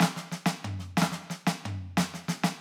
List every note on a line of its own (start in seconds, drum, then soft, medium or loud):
0.00 snare loud
0.03 snare loud
0.17 snare medium
0.32 snare loud
0.46 snare loud
0.65 high tom loud
0.79 snare medium
0.97 snare loud
1.02 snare loud
1.12 snare medium
1.30 snare loud
1.47 snare loud
1.66 high tom loud
1.98 snare loud
2.00 snare loud
2.14 snare medium
2.29 snare loud
2.44 snare loud